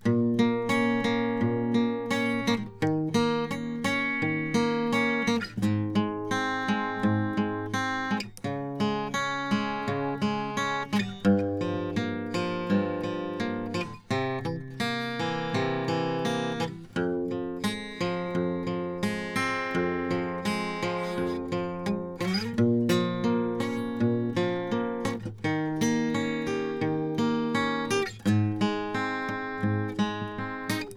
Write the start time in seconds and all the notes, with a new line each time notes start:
0.06 A#2
0.40 A#3
0.70 C#4
1.05 A#3
1.42 A#2
1.75 A#3
2.11 C#4
2.58 D#3
2.83 D#3
3.15 A#3
3.52 C#4
3.85 C#4
4.23 D#3
4.55 A#3
4.93 C#4
5.28 A#3
5.63 G#2 C4
5.73 G#3
5.96 G#3
6.32 C4
6.69 G#3
7.04 G#2
7.38 G#3
7.75 C4
8.12 G#3
8.45 C#3
8.81 G#3
9.15 C#4
9.52 G#3
9.89 C#3
10.23 G#3
10.58 C#4
11.26 G2
11.62 F3
11.97 A#3
12.35 F3
12.71 G2
13.05 F3
13.41 A#3
13.75 F3
14.11 C3
14.81 A#3
15.21 E3
15.55 C3
15.89 E3
16.26 A#3
16.61 E3
16.97 F2
17.32 F3
17.65 G#3
18.02 F3
18.36 F2
18.68 F3
19.04 G#3
19.37 C4
19.76 F2
20.11 F3
20.46 G#3
20.84 F3
21.19 F2
21.53 F3
22.59 A#2 A#3
22.90 F3
23.25 A#3
23.61 C#4
24.01 A#2
24.38 F3
24.73 A#3
25.45 D#3
25.76 G4
25.82 A#3
26.15 C#4
26.48 G4
26.82 D#3
27.19 A#3
27.55 C#4
27.91 G4
28.27 G#2
28.62 G#3
28.95 C4
29.64 G#2
30.00 G#3
30.40 C4